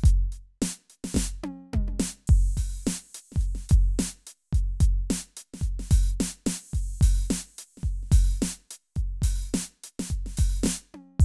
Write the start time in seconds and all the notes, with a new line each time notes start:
0.01 kick, hi-hat pedal
0.06 closed hi-hat
0.33 closed hi-hat
0.62 closed hi-hat, snare
0.90 closed hi-hat
1.05 snare
1.15 kick, snare
1.17 snare
1.44 high tom
1.74 kick, mid tom
1.88 mid tom, high tom
2.00 snare
2.28 kick, crash
2.58 open hi-hat, kick
2.83 snare, hi-hat pedal
3.15 closed hi-hat
3.32 snare
3.37 kick
3.42 closed hi-hat
3.56 snare
3.70 closed hi-hat, kick
3.99 closed hi-hat, snare
4.27 closed hi-hat
4.53 closed hi-hat, kick
4.81 closed hi-hat, kick
5.11 snare
5.37 closed hi-hat
5.54 snare
5.62 closed hi-hat, kick
5.80 snare
5.91 open hi-hat, kick
6.10 hi-hat pedal
6.21 snare
6.47 snare, hi-hat pedal, crash
6.74 closed hi-hat, kick
7.02 open hi-hat, kick
7.26 hi-hat pedal
7.31 snare
7.59 closed hi-hat
7.78 snare
7.84 kick, closed hi-hat
8.03 snare
8.12 open hi-hat, kick
8.36 hi-hat pedal
8.43 snare
8.71 closed hi-hat
8.96 closed hi-hat, kick
9.23 open hi-hat, kick
9.47 hi-hat pedal
9.54 snare
9.84 closed hi-hat
10.00 snare
10.11 closed hi-hat, kick
10.27 snare
10.38 open hi-hat, kick
10.59 hi-hat pedal
10.64 snare
10.66 snare
10.95 high tom
11.20 kick, crash